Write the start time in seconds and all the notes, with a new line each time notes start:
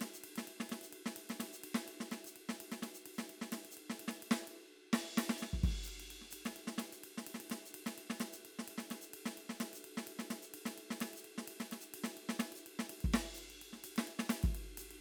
0.01 snare, ride
0.14 hi-hat pedal
0.24 ride
0.36 snare, ride
0.48 ride
0.60 snare
0.70 snare, ride
0.81 hi-hat pedal, ride
0.93 ride
1.06 snare
1.16 ride
1.29 snare, ride
1.40 snare, ride
1.53 hi-hat pedal
1.64 ride
1.75 snare, ride
1.88 ride
2.00 snare
2.12 snare, ride
2.25 hi-hat pedal, ride
2.36 ride
2.47 snare, hi-hat pedal
2.60 ride
2.72 snare, ride
2.82 snare, ride
2.94 hi-hat pedal
3.06 ride
3.14 hi-hat pedal
3.18 snare, ride
3.30 ride
3.42 snare
3.52 snare, ride
3.65 ride
3.71 hi-hat pedal
3.77 ride
3.90 snare
4.00 ride
4.08 snare, ride
4.23 ride
4.31 snare
4.48 ride
4.93 snare, ride
5.17 snare, ride
5.29 snare
5.38 hi-hat pedal
5.42 snare
5.53 kick
5.64 kick, ride
5.83 hi-hat pedal
5.88 ride
6.00 ride
6.11 ride
6.21 snare
6.31 hi-hat pedal, ride
6.45 snare, ride
6.56 ride
6.67 snare
6.78 snare, ride
6.92 hi-hat pedal, ride
7.04 ride
7.18 snare
7.27 ride
7.34 snare
7.40 ride
7.50 snare, ride
7.66 hi-hat pedal
7.74 ride
7.86 snare, ride
7.98 ride
8.10 snare
8.20 snare, ride
8.33 hi-hat pedal, ride
8.45 ride
8.52 hi-hat pedal
8.59 snare
8.68 ride
8.78 snare, ride
8.91 snare
9.01 hi-hat pedal
9.14 ride
9.21 hi-hat pedal
9.26 snare, ride
9.38 ride
9.49 snare
9.60 snare, ride
9.73 hi-hat pedal, ride
9.84 ride
9.95 snare, hi-hat pedal
10.07 ride
10.19 snare, ride
10.30 snare, ride
10.42 hi-hat pedal
10.54 ride
10.61 hi-hat pedal
10.66 snare, ride
10.78 ride
10.91 snare
11.01 snare, ride
11.13 hi-hat pedal, ride
11.25 ride
11.38 snare
11.48 ride
11.60 snare, ride
11.71 snare, ride
11.81 hi-hat pedal
11.94 ride
12.04 snare, ride
12.17 ride
12.29 snare
12.39 snare, ride
12.52 hi-hat pedal, ride
12.66 ride
12.79 snare
12.90 ride
13.01 kick, ride
13.13 snare, ride
13.34 hi-hat pedal, ride
13.50 ride
13.62 ride
13.73 snare
13.84 hi-hat pedal, ride
13.96 snare, ride
14.07 ride
14.19 snare
14.29 snare, hi-hat pedal, ride
14.43 kick, ride
14.53 hi-hat pedal, ride
14.78 hi-hat pedal, ride
14.91 ride